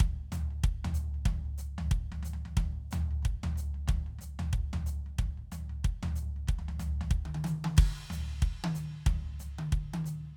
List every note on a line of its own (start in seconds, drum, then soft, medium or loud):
0.01 kick medium
0.01 floor tom medium
0.33 floor tom loud
0.33 hi-hat pedal medium
0.51 floor tom soft
0.64 kick medium
0.64 floor tom soft
0.85 floor tom loud
0.95 floor tom soft
0.95 hi-hat pedal medium
1.15 floor tom soft
1.26 kick medium
1.26 floor tom loud
1.45 kick soft
1.45 floor tom soft
1.59 floor tom soft
1.59 hi-hat pedal medium
1.79 floor tom loud
1.92 kick medium
1.92 floor tom soft
2.13 floor tom medium
2.24 floor tom medium
2.24 hi-hat pedal medium
2.34 floor tom medium
2.46 floor tom medium
2.58 kick medium
2.58 floor tom loud
2.92 floor tom loud
2.92 hi-hat pedal medium
3.12 floor tom soft
3.23 kick medium
3.23 floor tom soft
3.44 floor tom loud
3.57 floor tom soft
3.57 hi-hat pedal medium
3.75 floor tom soft
3.89 kick medium
3.89 floor tom loud
4.07 floor tom soft
4.20 floor tom medium
4.20 hi-hat pedal medium
4.40 floor tom loud
4.54 kick medium
4.54 floor tom soft
4.74 floor tom loud
4.87 floor tom soft
4.87 hi-hat pedal medium
5.07 floor tom soft
5.19 kick medium
5.19 floor tom medium
5.38 floor tom soft
5.52 floor tom medium
5.52 hi-hat pedal medium
5.70 floor tom soft
5.85 kick medium
5.85 floor tom soft
6.04 floor tom loud
6.09 floor tom soft
6.17 floor tom soft
6.17 hi-hat pedal medium
6.37 floor tom soft
6.48 kick medium
6.48 floor tom medium
6.59 floor tom medium
6.69 floor tom medium
6.80 floor tom loud
6.80 hi-hat pedal medium
7.02 floor tom loud
7.12 kick medium
7.16 high tom soft
7.35 high tom loud
7.45 hi-hat pedal medium
7.45 high tom loud
7.65 high tom loud
7.78 kick loud
7.78 crash medium
8.11 floor tom loud
8.11 hi-hat pedal medium
8.30 high tom soft
8.43 kick medium
8.43 floor tom soft
8.65 high tom loud
8.76 floor tom soft
8.76 hi-hat pedal medium
8.95 high tom soft
9.07 kick medium
9.07 floor tom loud
9.28 high tom soft
9.40 floor tom medium
9.40 hi-hat pedal medium
9.59 high tom loud
9.73 kick medium
9.73 floor tom soft
9.94 high tom loud
10.05 floor tom soft
10.05 hi-hat pedal medium
10.26 high tom soft